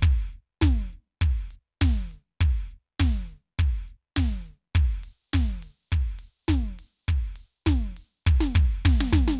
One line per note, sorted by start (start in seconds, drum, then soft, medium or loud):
0.01 kick loud
0.01 hi-hat pedal soft
0.32 closed hi-hat medium
0.62 kick loud
0.62 snare loud
0.93 closed hi-hat medium
1.22 kick loud
1.51 closed hi-hat loud
1.82 kick loud
1.82 snare loud
2.12 closed hi-hat loud
2.41 kick loud
2.41 ride soft
2.71 closed hi-hat medium
3.00 kick loud
3.00 snare loud
3.30 closed hi-hat medium
3.59 kick loud
3.88 closed hi-hat medium
4.17 kick medium
4.17 snare loud
4.46 closed hi-hat medium
4.75 kick loud
4.75 hi-hat pedal medium
5.04 open hi-hat loud
5.33 kick loud
5.33 snare loud
5.33 hi-hat pedal medium
5.63 open hi-hat loud
5.91 kick loud
5.91 hi-hat pedal medium
6.19 open hi-hat loud
6.48 kick loud
6.48 snare loud
6.48 hi-hat pedal medium
6.79 open hi-hat loud
7.08 kick loud
7.08 hi-hat pedal medium
7.36 open hi-hat loud
7.66 kick loud
7.66 snare loud
7.66 hi-hat pedal medium
7.97 open hi-hat loud
8.26 kick loud
8.26 hi-hat pedal medium
8.41 snare loud
8.55 open hi-hat loud
8.55 kick loud
8.85 kick loud
8.85 snare loud
9.01 snare loud
9.13 kick loud
9.13 snare loud
9.28 snare loud